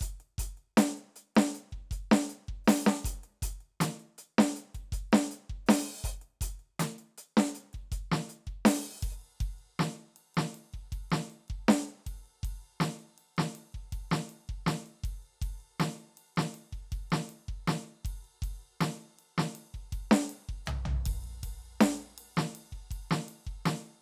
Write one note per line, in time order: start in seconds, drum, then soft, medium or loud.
0.01 closed hi-hat loud
0.01 kick medium
0.01 hi-hat pedal medium
0.20 closed hi-hat soft
0.38 closed hi-hat loud
0.38 kick medium
0.58 closed hi-hat soft
0.78 closed hi-hat loud
0.78 snare loud
0.98 closed hi-hat soft
1.16 closed hi-hat medium
1.36 snare loud
1.36 closed hi-hat soft
1.55 closed hi-hat medium
1.72 kick soft
1.72 closed hi-hat soft
1.91 closed hi-hat medium
1.91 kick medium
2.11 snare loud
2.11 closed hi-hat soft
2.29 closed hi-hat medium
2.48 kick medium
2.48 closed hi-hat soft
2.65 open hi-hat loud
2.65 snare loud
2.65 hi-hat pedal soft
2.87 snare loud
3.03 closed hi-hat loud
3.03 kick medium
3.03 hi-hat pedal medium
3.24 closed hi-hat soft
3.43 closed hi-hat loud
3.43 kick medium
3.61 closed hi-hat soft
3.81 closed hi-hat loud
3.81 snare loud
4.00 closed hi-hat soft
4.18 closed hi-hat medium
4.39 snare loud
4.56 closed hi-hat medium
4.75 kick soft
4.75 closed hi-hat medium
4.93 closed hi-hat medium
4.93 kick medium
5.13 snare loud
5.13 closed hi-hat medium
5.31 closed hi-hat medium
5.50 kick medium
5.50 closed hi-hat soft
5.67 open hi-hat loud
5.67 snare loud
5.67 hi-hat pedal soft
6.04 open hi-hat loud
6.04 kick medium
6.04 hi-hat pedal medium
6.22 closed hi-hat soft
6.41 closed hi-hat loud
6.41 kick medium
6.60 closed hi-hat soft
6.80 closed hi-hat loud
6.80 snare loud
6.99 closed hi-hat medium
7.18 closed hi-hat medium
7.37 snare loud
7.37 closed hi-hat soft
7.55 closed hi-hat medium
7.73 kick soft
7.73 closed hi-hat soft
7.92 closed hi-hat medium
7.92 kick medium
8.12 snare loud
8.12 closed hi-hat soft
8.29 closed hi-hat medium
8.47 kick medium
8.47 closed hi-hat soft
8.65 open hi-hat loud
8.65 snare loud
9.03 kick medium
9.03 ride loud
9.12 hi-hat pedal soft
9.22 ride soft
9.41 kick medium
9.41 ride medium
9.59 ride soft
9.80 snare loud
9.80 ride medium
10.16 ride medium
10.35 snare loud
10.35 ride soft
10.55 ride medium
10.73 kick soft
10.73 ride soft
10.92 kick medium
10.92 ride medium
11.11 snare loud
11.11 ride soft
11.30 ride soft
11.48 kick medium
11.48 ride soft
11.69 snare loud
11.69 ride medium
12.07 kick medium
12.07 ride medium
12.26 ride soft
12.43 kick medium
12.43 ride medium
12.62 ride soft
12.80 snare loud
12.80 ride medium
12.99 ride soft
13.18 ride soft
13.37 snare loud
13.37 ride soft
13.55 ride medium
13.73 kick soft
13.73 ride soft
13.93 kick medium
13.93 ride medium
14.11 snare loud
14.11 ride soft
14.30 ride medium
14.48 kick medium
14.48 ride soft
14.67 snare loud
14.67 ride medium
14.86 ride soft
15.04 kick medium
15.04 ride medium
15.23 ride soft
15.42 kick medium
15.42 ride medium
15.61 ride soft
15.80 snare loud
15.80 ride medium
15.98 ride soft
16.18 ride medium
16.37 snare loud
16.37 ride soft
16.55 ride medium
16.73 kick soft
16.73 ride soft
16.92 kick medium
16.92 ride medium
17.11 snare loud
17.11 ride soft
17.29 ride medium
17.48 kick medium
17.48 ride soft
17.68 snare loud
17.68 ride medium
18.05 kick medium
18.05 ride medium
18.25 ride soft
18.42 kick medium
18.42 ride medium
18.63 ride soft
18.81 snare loud
18.81 ride medium
19.00 ride soft
19.19 ride soft
19.38 snare loud
19.38 ride soft
19.55 ride medium
19.74 kick soft
19.74 ride soft
19.93 kick medium
19.93 ride medium
20.11 snare loud
20.28 hi-hat pedal soft
20.28 ride medium
20.49 kick medium
20.66 hi-hat pedal medium
20.66 floor tom loud
20.86 floor tom loud
21.06 kick medium
21.06 ride loud
21.24 ride soft
21.43 kick medium
21.43 ride loud
21.62 ride soft
21.81 snare loud
21.81 ride loud
22.00 ride soft
22.18 ride loud
22.37 snare loud
22.37 ride soft
22.55 ride medium
22.72 kick soft
22.72 ride soft
22.91 kick medium
22.91 ride medium
23.10 snare loud
23.10 ride soft
23.29 ride medium
23.45 kick medium
23.45 ride soft
23.66 snare loud
23.66 ride medium
23.85 ride soft